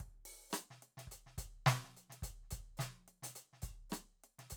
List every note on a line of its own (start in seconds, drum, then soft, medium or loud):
0.00 kick soft
0.00 closed hi-hat soft
0.25 open hi-hat medium
0.50 closed hi-hat loud
0.50 cross-stick medium
0.50 hi-hat pedal medium
0.70 snare soft
0.82 closed hi-hat soft
0.97 snare soft
0.97 closed hi-hat medium
1.07 kick soft
1.11 closed hi-hat medium
1.26 snare soft
1.38 closed hi-hat medium
1.38 kick soft
1.66 closed hi-hat medium
1.66 snare loud
1.66 hi-hat pedal medium
1.84 snare soft
1.96 closed hi-hat soft
2.10 snare soft
2.10 closed hi-hat medium
2.22 closed hi-hat medium
2.22 kick soft
2.43 snare soft
2.51 closed hi-hat medium
2.51 kick soft
2.77 closed hi-hat medium
2.77 snare medium
2.77 hi-hat pedal medium
3.08 closed hi-hat soft
3.22 closed hi-hat medium
3.22 snare soft
3.35 closed hi-hat medium
3.53 snare soft
3.62 open hi-hat medium
3.62 kick soft
3.90 closed hi-hat medium
3.90 cross-stick medium
3.90 hi-hat pedal medium
4.24 closed hi-hat soft
4.38 snare soft
4.38 closed hi-hat soft
4.50 closed hi-hat medium
4.50 kick soft